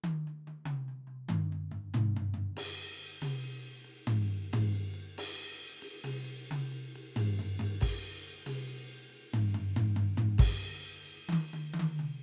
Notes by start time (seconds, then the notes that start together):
0.04 high tom
0.27 high tom
0.47 high tom
0.65 mid tom
0.88 mid tom
1.07 mid tom
1.29 floor tom, high tom
1.52 floor tom
1.71 floor tom
1.94 floor tom, mid tom
2.16 floor tom
2.34 floor tom
2.57 ride, crash
2.79 ride
3.22 mid tom, ride
3.44 ride
3.63 ride
3.85 ride
4.07 floor tom, ride
4.28 ride
4.53 floor tom, ride
4.76 ride
4.94 ride
5.18 ride, crash
5.43 ride
5.62 ride
5.82 ride
6.04 mid tom, ride
6.24 ride
6.51 mid tom, ride
6.72 ride
6.96 ride
7.16 floor tom, ride
7.39 floor tom, ride
7.59 floor tom, ride
7.80 kick, ride, crash
8.24 ride
8.46 mid tom, ride
8.68 ride
8.89 ride
9.10 ride
9.33 floor tom
9.54 floor tom
9.76 floor tom
9.96 floor tom
10.17 floor tom
10.38 kick, ride, crash
11.29 high tom
11.32 high tom
11.53 high tom
11.74 high tom
11.79 high tom
11.99 mid tom